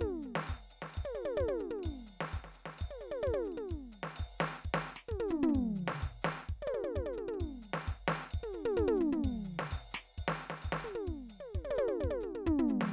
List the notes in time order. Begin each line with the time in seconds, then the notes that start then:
0.01 kick, mid tom
0.23 hi-hat pedal, mid tom
0.36 snare
0.44 hi-hat pedal, ride bell
0.50 kick
0.55 kick
0.70 hi-hat pedal, ride
0.82 snare
0.94 kick, ride
1.03 kick, high tom
1.15 hi-hat pedal, high tom
1.25 high tom
1.36 hi-hat pedal, high tom
1.41 kick
1.49 high tom
1.59 hi-hat pedal, mid tom
1.71 mid tom
1.79 mid tom
1.84 kick, ride bell
2.07 hi-hat pedal, ride
2.21 snare
2.28 hi-hat pedal, ride bell
2.34 kick
2.45 snare
2.54 hi-hat pedal, ride
2.66 snare
2.79 kick, ride
2.91 high tom
3.01 hi-hat pedal
3.12 high tom
3.23 high tom
3.28 kick
3.34 high tom
3.45 hi-hat pedal, mid tom
3.52 ride
3.57 mid tom
3.70 kick, mid tom, ride bell
3.92 hi-hat pedal, ride
4.04 snare
4.14 hi-hat pedal, ride
4.20 kick
4.39 snare, hi-hat pedal
4.64 kick, ride bell
4.74 snare
4.84 hi-hat pedal, ride
4.97 snare
5.04 hi-hat pedal
5.09 kick, mid tom
5.20 mid tom
5.29 floor tom, hi-hat pedal
5.43 floor tom
5.49 floor tom
5.55 kick, ride bell
5.61 kick
5.76 hi-hat pedal, ride
5.88 snare
5.97 hi-hat pedal, ride bell
6.03 kick
6.11 kick
6.22 snare, hi-hat pedal
6.49 kick
6.57 kick
6.62 high tom
6.67 hi-hat pedal, high tom
6.74 high tom
6.84 high tom
6.96 kick, high tom
7.03 kick, high tom
7.13 hi-hat pedal
7.18 mid tom
7.28 mid tom
7.34 mid tom
7.40 kick, ride bell
7.62 hi-hat pedal, ride
7.74 snare
7.83 hi-hat pedal, ride bell
7.88 kick
7.94 kick
7.96 kick
8.07 snare, hi-hat pedal
8.29 hi-hat pedal, ride
8.34 kick
8.40 kick, mid tom
8.53 hi-hat pedal, mid tom
8.65 mid tom
8.73 hi-hat pedal, mid tom
8.80 kick
8.86 kick, mid tom
8.97 floor tom, hi-hat pedal
9.12 floor tom
9.25 kick, ride bell
9.33 kick
9.45 hi-hat pedal
9.49 ride
9.60 snare
9.66 hi-hat pedal
9.71 kick, ride
9.92 snare, hi-hat pedal
10.13 hi-hat pedal
10.18 kick, ride
10.28 snare
10.38 hi-hat pedal, ride
10.50 snare
10.62 kick, ride
10.73 snare
10.82 hi-hat pedal, mid tom
10.95 mid tom
11.07 kick, ride bell
11.29 hi-hat pedal, ride
11.40 high tom
11.55 kick, high tom
11.65 high tom
11.71 high tom
11.75 hi-hat pedal, high tom
11.88 high tom
12.01 kick, high tom
12.11 kick, high tom
12.21 hi-hat pedal, mid tom
12.35 mid tom
12.46 kick, floor tom
12.59 floor tom
12.69 floor tom, hi-hat pedal
12.81 snare